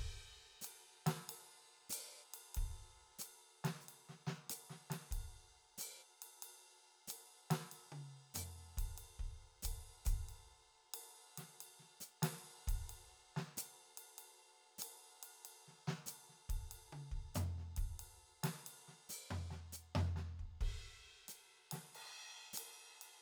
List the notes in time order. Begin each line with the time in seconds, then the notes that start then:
0.62 hi-hat pedal, ride
1.07 snare, ride
1.29 ride
1.90 hi-hat pedal, ride
2.34 ride
2.55 kick, ride
3.19 hi-hat pedal, ride
3.65 snare, ride
3.81 hi-hat pedal
3.89 ride
4.09 snare
4.27 snare
4.50 hi-hat pedal, ride
4.70 snare
4.90 snare, ride
5.11 kick, ride
5.78 hi-hat pedal, ride
6.22 ride
6.43 ride
7.08 hi-hat pedal, ride
7.51 snare, ride
7.72 ride
7.92 high tom
8.35 floor tom, hi-hat pedal, ride
8.78 kick, ride
8.98 ride
9.19 kick
9.63 kick, hi-hat pedal, ride
10.06 open hi-hat, kick, ride
10.29 ride
10.94 ride
11.38 snare, ride
11.61 ride
11.79 snare
12.01 hi-hat pedal
12.23 snare, ride
12.68 kick, ride
12.90 ride
13.37 snare
13.58 hi-hat pedal, ride
13.98 ride
14.19 ride
14.79 hi-hat pedal, ride
15.23 ride
15.45 ride
15.68 snare
15.88 snare
16.06 hi-hat pedal, ride
16.29 snare
16.49 kick, ride
16.72 ride
16.93 high tom
17.12 kick
17.35 floor tom, hi-hat pedal
17.59 snare
17.77 kick, ride
18.00 ride
18.44 snare, ride
18.67 ride
18.88 snare
19.10 hi-hat pedal
19.31 snare, floor tom
19.51 snare
19.73 hi-hat pedal
19.95 snare, floor tom
20.16 snare
20.39 kick
20.61 kick, crash
21.29 hi-hat pedal, ride
21.72 snare, ride
21.95 ride
22.54 hi-hat pedal
22.58 ride
23.02 ride